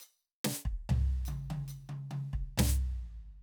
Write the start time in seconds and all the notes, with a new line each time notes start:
0.00 hi-hat pedal
0.44 snare
0.65 kick
0.89 floor tom
1.25 hi-hat pedal, high tom
1.50 high tom
1.68 hi-hat pedal
1.89 high tom
2.11 high tom
2.33 kick
2.57 snare, floor tom